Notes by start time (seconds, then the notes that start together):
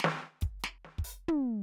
0.00 snare
0.04 snare
0.22 snare
0.41 open hi-hat, kick
0.59 hi-hat pedal
0.64 snare
0.84 snare
0.98 kick
1.04 open hi-hat
1.27 floor tom